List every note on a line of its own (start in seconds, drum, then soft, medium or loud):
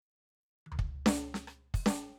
0.66 high tom soft
0.72 floor tom medium
0.79 kick medium
1.06 snare loud
1.34 snare medium
1.47 cross-stick medium
1.74 open hi-hat medium
1.74 kick medium
1.86 snare loud
1.86 hi-hat pedal soft
2.00 snare soft